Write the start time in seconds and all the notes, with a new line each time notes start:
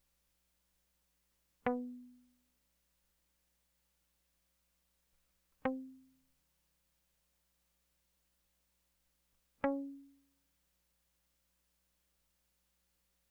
1.67 B3
5.66 C4
9.65 C#4